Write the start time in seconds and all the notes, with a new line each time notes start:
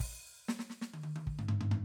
0.02 open hi-hat, kick
0.48 snare
0.59 snare
0.70 snare
0.81 snare
0.94 high tom
1.03 high tom
1.16 high tom
1.27 kick
1.39 floor tom
1.49 floor tom
1.61 floor tom
1.71 floor tom